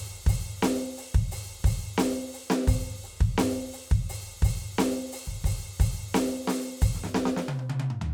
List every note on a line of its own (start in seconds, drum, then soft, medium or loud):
0.27 open hi-hat loud
0.27 kick loud
0.63 open hi-hat loud
0.63 snare loud
0.98 open hi-hat loud
1.15 kick loud
1.32 open hi-hat loud
1.65 open hi-hat loud
1.65 kick loud
1.98 open hi-hat loud
1.98 snare loud
2.34 open hi-hat loud
2.51 snare loud
2.68 open hi-hat loud
2.68 kick loud
2.91 snare soft
2.94 snare soft
3.04 open hi-hat medium
3.21 kick loud
3.38 open hi-hat loud
3.38 snare loud
3.73 open hi-hat loud
3.92 kick loud
4.10 open hi-hat loud
4.43 open hi-hat loud
4.43 kick loud
4.79 open hi-hat loud
4.79 snare loud
5.13 open hi-hat loud
5.28 kick medium
5.45 open hi-hat loud
5.45 kick loud
5.80 open hi-hat loud
5.80 kick loud
6.15 open hi-hat loud
6.15 snare loud
6.48 open hi-hat loud
6.48 snare loud
6.82 open hi-hat loud
6.82 kick loud
6.95 snare soft
7.04 snare medium
7.15 snare loud
7.26 snare medium
7.37 snare loud
7.49 high tom loud
7.60 high tom medium
7.70 high tom loud
7.91 mid tom loud
8.02 floor tom loud